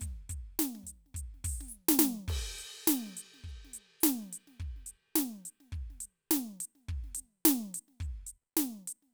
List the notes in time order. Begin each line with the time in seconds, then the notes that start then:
0.01 closed hi-hat, kick
0.30 closed hi-hat, kick
0.59 closed hi-hat, snare
0.75 snare
0.83 closed hi-hat, kick
1.06 snare
1.15 closed hi-hat, kick
1.34 snare
1.44 open hi-hat, kick
1.61 snare
1.69 hi-hat pedal
1.89 snare
1.99 snare
2.19 snare
2.28 kick, crash
2.58 closed hi-hat
2.88 closed hi-hat, snare
3.06 snare
3.17 closed hi-hat
3.34 snare
3.44 kick
3.49 closed hi-hat
3.65 snare
3.73 open hi-hat
4.00 closed hi-hat, snare, hi-hat pedal
4.22 snare
4.33 closed hi-hat
4.48 snare
4.60 kick, closed hi-hat
4.76 snare
4.86 closed hi-hat
5.16 closed hi-hat, snare
5.38 snare
5.45 closed hi-hat
5.60 snare
5.72 kick, closed hi-hat
5.90 snare
6.00 closed hi-hat
6.31 closed hi-hat, snare
6.60 closed hi-hat
6.75 snare
6.89 kick, closed hi-hat
7.04 snare
7.15 closed hi-hat, snare
7.45 closed hi-hat, snare
7.74 closed hi-hat
7.88 snare
8.00 closed hi-hat, kick
8.27 closed hi-hat
8.57 closed hi-hat, snare
8.88 closed hi-hat
9.03 snare